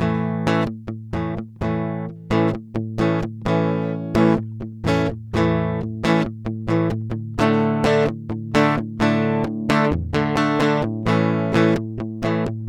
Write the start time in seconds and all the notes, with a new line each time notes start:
0.01 A2 E3 A3 C#4
0.48 A2 E3 A3 C#4
0.68 A2
0.89 A2
1.14 A2 E3 A3
1.40 A2
1.62 A2 E3 A3
2.32 A2 E3 A3 C#4
2.56 A2
2.76 A2
2.99 A2 E3 A3
3.03 C#4
3.24 A2
3.47 A2 E3 A3 C#4
4.16 A2 E3 A3 C#4
4.38 A2
4.62 A2
4.86 A2 E3 A3 C#4
4.91 E4
5.11 A2
5.35 A2 E3 A3
6.05 A2 E3 A3 C#4
6.26 A2
6.47 A2
6.70 A2 E3 A3
6.91 A2
7.13 A2 D3
7.40 A2 D3 A3
7.85 D3 A3 D4
8.09 A2 D3
8.31 A2 D3
8.56 D3 A3 D4
8.79 A2
9.01 A2 D3 A3 D4
9.45 A2
9.71 D3 A3 D4
9.93 A2
10.15 D3 A3
10.38 A3 D4
10.61 D3 A3 D4
10.83 A2
11.08 A2 E3 A3 C#4
11.56 A2 E3 A3 C#4
11.77 A2
11.99 A2
12.24 A2 E3 A3
12.47 A2